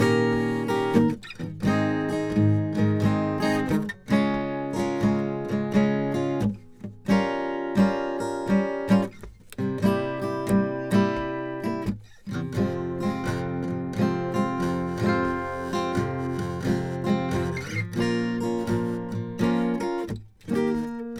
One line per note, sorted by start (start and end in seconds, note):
0.00 1.12 A#3
0.00 0.79 C#4
0.00 0.68 G4
0.00 0.66 A#4
0.70 1.04 G4
0.70 1.21 A#4
0.80 1.10 C#4
0.96 1.20 D#3
1.43 1.65 D#3
1.62 2.38 G#2
1.62 2.35 D#3
1.67 2.81 G#3
1.67 2.13 C4
1.67 2.13 D#4
1.72 2.11 G#4
2.11 2.37 C4
2.11 3.08 D#4
2.11 3.39 G#4
2.38 2.76 G#2
2.38 2.78 D#3
2.77 3.01 G#2
2.77 3.03 D#3
2.81 3.06 G#3
3.02 3.68 G#2
3.02 3.70 D#3
3.06 3.44 G#3
3.06 3.45 C4
3.06 3.44 D#4
3.42 3.73 G#3
3.42 3.73 D#4
3.42 3.65 G#4
3.46 3.78 C4
3.71 3.88 D#3
3.71 3.93 G#3
4.10 5.02 C#3
4.10 4.81 G#3
4.10 4.77 C#4
4.15 4.78 F4
4.75 5.05 C#4
4.75 6.16 F4
4.75 5.26 A#4
4.82 5.05 G#3
5.03 5.46 C#3
5.03 5.51 G#3
5.03 5.78 C#4
5.46 5.74 C#3
5.51 5.77 G#3
5.74 6.55 C#3
5.74 6.54 G#3
5.78 6.18 C#4
6.16 6.55 C#4
6.16 6.50 F4
7.08 7.77 G3
7.08 7.80 C#4
7.12 7.81 F4
7.12 7.82 A#4
7.77 8.48 G3
7.77 8.52 C#4
7.81 8.20 F4
7.81 8.18 A#4
8.21 8.52 F4
8.21 8.92 A#4
8.49 8.89 G3
8.49 8.92 C#4
8.49 8.91 F4
8.90 9.13 G3
8.90 9.16 C#4
8.90 9.10 F4
8.95 9.07 A#4
9.60 9.79 C3
9.60 9.82 G3
9.80 10.48 C3
9.85 10.49 G3
9.85 9.97 A#3
9.85 10.23 E4
9.85 10.21 G4
10.23 10.95 E4
10.23 10.92 G4
10.48 12.02 C3
10.48 10.92 G3
10.48 10.61 A#3
10.93 11.86 G3
10.93 11.27 A#3
10.93 11.63 E4
10.97 11.27 G4
11.65 11.81 A#3
11.65 11.90 E4
12.33 12.49 E2
12.33 12.55 C3
12.54 13.26 F2
12.54 13.27 C3
12.59 14.01 F3
12.59 12.79 G#3
12.59 13.01 C4
12.64 12.95 F4
13.02 13.17 G#3
13.02 14.03 C4
13.02 14.02 F4
13.27 13.68 F2
13.27 13.68 C3
13.70 13.94 F2
13.70 13.96 C3
13.95 14.59 F2
13.99 14.62 C3
13.99 15.01 F3
13.99 14.17 G#3
14.03 14.35 C4
14.03 14.31 F4
14.36 14.55 G#3
14.36 15.05 C4
14.36 15.10 F4
14.60 15.08 F2
14.60 14.99 C3
15.00 15.96 C3
15.00 15.97 F3
15.05 15.96 F2
15.05 15.18 G#3
15.05 15.73 C4
15.10 15.71 F4
15.74 15.93 C4
15.74 16.70 C4
15.74 16.65 F4
15.96 16.41 F2
15.96 16.41 C3
15.96 16.43 F3
16.41 16.63 F2
16.41 16.67 C3
16.63 17.32 F2
16.63 17.33 C3
16.67 17.11 F3
16.67 16.85 G#3
16.67 17.05 C4
17.05 17.48 C4
17.05 17.32 F4
17.10 17.35 F3
17.10 17.24 G#3
17.33 17.68 F2
17.33 17.71 C3
17.33 17.56 F3
17.74 17.98 F3
17.95 18.69 A#2
17.95 18.69 F3
17.95 18.72 A#3
18.00 18.47 C#4
18.00 18.40 F4
18.00 18.40 A#4
18.42 18.66 F4
18.42 19.45 A#4
18.47 19.19 C#4
18.69 19.01 A#2
18.69 19.13 F3
18.69 19.41 A#3
19.14 19.44 A#2
19.14 19.40 F3
19.41 19.81 F3
19.41 19.85 A#3
19.41 20.09 C#4
19.46 19.80 F4
19.46 19.79 A#4
19.82 20.14 F4
19.82 20.09 A#4
20.50 20.86 D#3
20.50 21.20 A#3
20.55 20.68 C4
20.55 20.79 G4
20.59 21.12 A#4